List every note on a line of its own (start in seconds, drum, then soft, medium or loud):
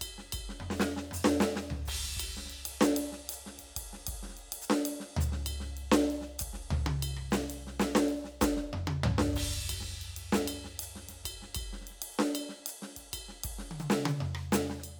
0.01 kick soft
0.01 hi-hat pedal soft
0.01 ride bell loud
0.18 snare soft
0.32 kick soft
0.32 ride bell loud
0.40 kick soft
0.49 snare soft
0.60 mid tom medium
0.70 snare medium
0.76 snare loud
0.76 hi-hat pedal soft
0.97 snare medium
1.11 hi-hat pedal loud
1.11 mid tom medium
1.24 snare loud
1.40 snare loud
1.56 snare medium
1.70 floor tom medium
1.85 kick soft
1.85 hi-hat pedal soft
1.85 crash loud
2.04 snare soft
2.17 kick soft
2.17 ride bell loud
2.37 snare soft
2.45 snare soft
2.50 ride medium
2.65 ride loud
2.81 snare loud
2.81 hi-hat pedal medium
2.96 ride loud
3.12 snare soft
3.29 hi-hat pedal medium
3.29 ride loud
3.46 snare soft
3.59 kick soft
3.59 snare soft
3.59 ride medium
3.76 kick soft
3.76 hi-hat pedal soft
3.76 ride loud
3.93 snare soft
4.07 kick soft
4.07 ride loud
4.14 kick soft
4.23 snare soft
4.29 snare soft
4.34 snare soft
4.34 ride soft
4.52 ride loud
4.62 hi-hat pedal loud
4.70 snare loud
4.85 ride loud
5.00 snare soft
5.17 floor tom loud
5.21 hi-hat pedal loud
5.32 snare medium
5.46 ride bell loud
5.60 snare soft
5.77 ride medium
5.92 snare loud
6.10 hi-hat pedal soft
6.10 ride soft
6.21 snare soft
6.39 kick soft
6.39 hi-hat pedal loud
6.39 ride loud
6.47 kick soft
6.53 snare soft
6.71 floor tom loud
6.86 high tom loud
7.03 ride bell loud
7.17 cross-stick medium
7.31 snare loud
7.31 hi-hat pedal soft
7.50 hi-hat pedal soft
7.50 ride medium
7.67 snare soft
7.80 snare loud
7.95 snare loud
8.08 ride soft
8.24 snare soft
8.41 kick soft
8.41 snare loud
8.41 hi-hat pedal loud
8.48 kick soft
8.57 snare soft
8.73 mid tom loud
8.87 high tom loud
9.04 floor tom loud
9.18 snare medium
9.33 kick soft
9.33 hi-hat pedal soft
9.33 crash loud
9.42 kick soft
9.52 cross-stick soft
9.69 kick soft
9.69 ride bell loud
9.80 snare soft
9.89 snare soft
10.01 ride medium
10.17 ride medium
10.32 snare loud
10.32 hi-hat pedal medium
10.48 ride bell loud
10.64 snare soft
10.79 hi-hat pedal medium
10.79 ride loud
10.96 snare soft
11.08 kick soft
11.08 snare soft
11.08 ride medium
11.25 kick soft
11.25 hi-hat pedal soft
11.25 ride bell loud
11.42 snare soft
11.55 kick soft
11.55 ride bell loud
11.62 kick soft
11.73 snare soft
11.81 snare soft
11.87 snare soft
11.87 ride medium
12.02 ride loud
12.12 hi-hat pedal soft
12.19 snare loud
12.35 ride bell loud
12.49 snare soft
12.66 hi-hat pedal medium
12.66 ride loud
12.82 snare medium
12.96 kick soft
12.96 snare soft
12.96 ride medium
13.13 kick soft
13.13 ride bell loud
13.28 snare soft
13.44 kick soft
13.44 ride loud
13.50 kick soft
13.58 snare soft
13.71 high tom medium
13.79 hi-hat pedal soft
13.79 high tom medium
13.90 snare loud
14.06 hi-hat pedal soft
14.06 high tom loud
14.20 mid tom medium
14.35 cross-stick medium
14.52 snare loud
14.52 hi-hat pedal loud
14.70 snare medium
14.79 snare soft
14.84 ride bell medium
14.89 snare soft